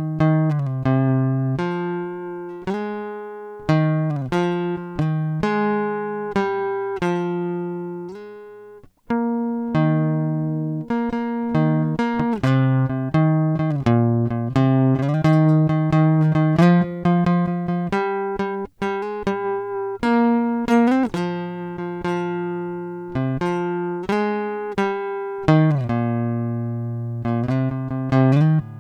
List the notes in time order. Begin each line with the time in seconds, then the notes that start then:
0.00 D#3
0.22 D#3
0.62 C3
0.88 C3
1.61 F3
2.70 G#3
3.71 D#3
4.34 F3
4.78 F3
5.01 D#3
5.45 G#3
6.38 G3
7.04 F3
8.11 G#3
9.12 A#3
9.77 D#3
10.93 A#3
11.16 A#3
11.57 D#3
12.01 A#3
12.46 C3
12.93 C3
13.16 D#3
13.62 D#3
13.88 A#2
14.33 A#2
14.58 C3
14.98 D3
15.27 D#3
15.72 D#3
15.95 D#3
16.38 D#3
16.61 F3
16.84 F3
17.07 F3
17.29 F3
17.48 F3
17.71 F3
17.95 G3
18.41 G3
18.84 G3
19.05 G#3
19.29 G3
20.05 A#3
20.70 A#3
20.90 C4
21.16 F3
21.81 F3
22.07 F3
23.18 C3
23.43 F3
24.11 G#3
24.80 G3
25.50 D#3
25.92 A#2
27.27 A#2
27.51 C3
27.72 C3
27.94 C3
28.15 C3
28.35 D#3
28.61 A2